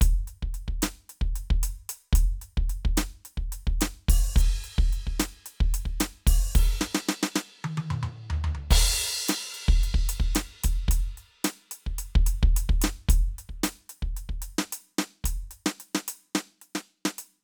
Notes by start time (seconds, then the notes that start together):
0.01 kick, closed hi-hat
0.27 closed hi-hat
0.42 kick
0.54 closed hi-hat
0.68 kick
0.82 snare, closed hi-hat
1.09 closed hi-hat
1.21 kick
1.36 closed hi-hat
1.50 kick
1.63 closed hi-hat
1.89 closed hi-hat
2.13 kick, closed hi-hat
2.41 closed hi-hat
2.57 kick
2.69 closed hi-hat
2.85 kick
2.97 snare, closed hi-hat
3.25 closed hi-hat
3.37 kick
3.52 closed hi-hat
3.67 kick
3.81 snare, closed hi-hat
4.09 kick, open hi-hat
4.36 kick, hi-hat pedal, crash
4.64 closed hi-hat
4.78 kick
4.93 closed hi-hat
5.07 kick
5.20 snare, closed hi-hat
5.46 closed hi-hat
5.60 kick
5.74 closed hi-hat
5.85 kick
6.00 snare, closed hi-hat
6.27 kick, open hi-hat
6.55 kick, hi-hat pedal, crash
6.81 snare
6.95 snare
7.09 snare
7.23 snare
7.36 snare
7.64 high tom
7.77 high tom
7.90 mid tom
8.03 mid tom
8.30 floor tom
8.44 floor tom
8.55 floor tom
8.70 kick, crash
9.29 snare, closed hi-hat
9.54 closed hi-hat
9.68 kick
9.83 closed hi-hat
9.94 kick
10.09 closed hi-hat
10.20 kick
10.35 snare, closed hi-hat
10.64 kick, closed hi-hat
10.88 kick, closed hi-hat
11.17 closed hi-hat
11.44 snare, closed hi-hat
11.71 closed hi-hat
11.86 kick
11.98 closed hi-hat
12.15 kick
12.26 closed hi-hat
12.43 kick
12.56 closed hi-hat
12.69 kick
12.82 snare, closed hi-hat
13.09 kick, closed hi-hat
13.38 closed hi-hat
13.49 kick
13.63 snare, closed hi-hat
13.89 closed hi-hat
14.02 kick
14.17 closed hi-hat
14.29 kick
14.42 closed hi-hat
14.58 snare
14.72 closed hi-hat
14.98 snare
15.24 kick, closed hi-hat
15.51 closed hi-hat
15.66 snare
15.80 closed hi-hat
15.95 snare
16.08 closed hi-hat
16.35 snare
16.61 closed hi-hat
16.75 snare
17.05 snare
17.18 closed hi-hat